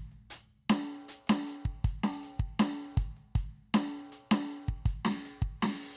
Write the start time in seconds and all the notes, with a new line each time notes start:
0.12 closed hi-hat
0.31 closed hi-hat
0.51 closed hi-hat
0.70 closed hi-hat, snare
0.90 closed hi-hat
1.07 closed hi-hat, hi-hat pedal
1.28 snare, closed hi-hat
1.48 closed hi-hat
1.66 kick, closed hi-hat
1.85 closed hi-hat, kick, cross-stick
2.04 snare, closed hi-hat
2.24 closed hi-hat
2.40 kick, closed hi-hat
2.60 open hi-hat, snare, hi-hat pedal
2.98 closed hi-hat, kick, hi-hat pedal
3.17 closed hi-hat
3.36 closed hi-hat, kick
3.56 closed hi-hat
3.75 closed hi-hat, snare
3.94 closed hi-hat
4.13 closed hi-hat
4.32 snare, closed hi-hat
4.50 closed hi-hat
4.68 kick, closed hi-hat
4.86 closed hi-hat, kick
5.06 snare
5.26 closed hi-hat
5.43 kick, closed hi-hat
5.61 open hi-hat, snare, hi-hat pedal